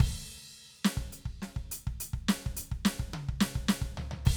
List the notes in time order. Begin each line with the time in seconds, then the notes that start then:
0.00 kick, crash
0.75 hi-hat pedal
0.85 snare
0.97 kick
1.13 closed hi-hat
1.26 kick
1.42 snare
1.56 kick
1.72 closed hi-hat
1.87 kick
2.00 closed hi-hat
2.14 kick
2.29 snare
2.46 kick
2.57 closed hi-hat
2.72 kick
2.85 snare
3.00 kick
3.14 high tom
3.29 kick
3.41 snare
3.56 kick
3.69 snare
3.82 kick
3.98 floor tom
4.11 floor tom
4.26 kick, crash